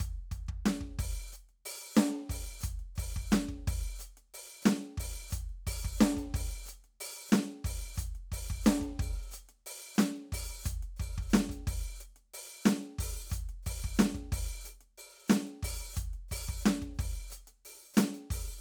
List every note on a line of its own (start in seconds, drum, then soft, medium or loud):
0.00 closed hi-hat medium
0.00 kick medium
0.31 closed hi-hat medium
0.31 kick medium
0.47 kick medium
0.47 closed hi-hat soft
0.65 closed hi-hat medium
0.65 snare loud
0.81 kick soft
0.99 open hi-hat loud
0.99 kick medium
1.32 hi-hat pedal medium
1.49 closed hi-hat soft
1.65 open hi-hat loud
1.95 closed hi-hat medium
1.95 snare loud
1.95 hi-hat pedal medium
2.29 open hi-hat loud
2.29 kick medium
2.60 closed hi-hat medium
2.60 kick medium
2.60 hi-hat pedal medium
2.79 closed hi-hat soft
2.95 open hi-hat loud
2.95 kick medium
2.95 hi-hat pedal soft
3.16 kick medium
3.31 closed hi-hat medium
3.31 snare loud
3.31 hi-hat pedal medium
3.48 kick soft
3.48 closed hi-hat soft
3.67 open hi-hat loud
3.67 kick medium
3.99 closed hi-hat medium
3.99 hi-hat pedal medium
4.17 closed hi-hat soft
4.34 open hi-hat loud
4.62 closed hi-hat medium
4.62 snare loud
4.62 hi-hat pedal medium
4.82 closed hi-hat soft
4.97 open hi-hat loud
4.97 kick medium
5.30 closed hi-hat medium
5.30 kick medium
5.30 hi-hat pedal medium
5.49 closed hi-hat soft
5.67 open hi-hat loud
5.67 kick medium
5.84 kick medium
5.98 closed hi-hat medium
5.98 snare loud
5.98 hi-hat pedal medium
6.17 closed hi-hat soft
6.17 kick soft
6.34 open hi-hat loud
6.34 kick medium
6.66 closed hi-hat medium
6.66 hi-hat pedal medium
6.84 closed hi-hat soft
7.00 open hi-hat loud
7.29 closed hi-hat medium
7.29 snare loud
7.29 hi-hat pedal medium
7.48 closed hi-hat soft
7.64 open hi-hat loud
7.64 kick medium
7.64 hi-hat pedal soft
7.95 closed hi-hat loud
7.95 kick medium
7.95 hi-hat pedal medium
8.15 closed hi-hat soft
8.32 open hi-hat loud
8.32 kick medium
8.50 kick medium
8.63 closed hi-hat loud
8.63 snare loud
8.63 hi-hat pedal medium
8.81 kick soft
8.81 closed hi-hat soft
8.99 open hi-hat medium
8.99 kick medium
9.31 closed hi-hat medium
9.31 hi-hat pedal medium
9.49 closed hi-hat soft
9.66 open hi-hat loud
9.95 closed hi-hat loud
9.95 snare loud
9.95 hi-hat pedal medium
10.16 closed hi-hat soft
10.32 open hi-hat loud
10.32 kick medium
10.64 closed hi-hat loud
10.64 kick medium
10.64 hi-hat pedal medium
10.82 closed hi-hat soft
10.96 kick medium
10.96 hi-hat pedal soft
11.00 open hi-hat medium
11.18 kick medium
11.30 closed hi-hat medium
11.30 snare loud
11.30 hi-hat pedal medium
11.49 closed hi-hat medium
11.49 kick soft
11.67 open hi-hat loud
11.67 kick medium
12.00 open hi-hat medium
12.00 hi-hat pedal medium
12.16 closed hi-hat soft
12.33 open hi-hat loud
12.64 closed hi-hat medium
12.64 snare loud
12.64 hi-hat pedal medium
12.83 closed hi-hat soft
12.98 open hi-hat loud
12.98 kick medium
13.29 closed hi-hat medium
13.29 kick medium
13.29 hi-hat pedal medium
13.49 closed hi-hat soft
13.63 open hi-hat loud
13.63 kick medium
13.63 hi-hat pedal soft
13.84 kick medium
13.96 closed hi-hat medium
13.96 snare loud
13.96 hi-hat pedal medium
14.14 kick soft
14.14 closed hi-hat soft
14.32 open hi-hat loud
14.32 kick medium
14.64 open hi-hat medium
14.64 hi-hat pedal medium
14.81 closed hi-hat soft
14.98 open hi-hat medium
15.28 closed hi-hat loud
15.28 snare loud
15.28 hi-hat pedal medium
15.47 closed hi-hat soft
15.63 open hi-hat loud
15.63 kick medium
15.93 closed hi-hat medium
15.93 kick medium
15.93 hi-hat pedal medium
16.13 closed hi-hat soft
16.28 open hi-hat loud
16.28 kick medium
16.28 hi-hat pedal soft
16.48 kick medium
16.62 closed hi-hat medium
16.62 snare loud
16.62 hi-hat pedal medium
16.82 kick soft
16.82 closed hi-hat soft
16.94 hi-hat pedal soft
16.99 open hi-hat medium
16.99 kick medium
17.30 closed hi-hat medium
17.30 hi-hat pedal medium
17.47 closed hi-hat medium
17.65 open hi-hat medium
17.94 closed hi-hat loud
17.94 snare loud
17.94 hi-hat pedal medium
18.13 closed hi-hat soft
18.30 open hi-hat loud
18.30 kick medium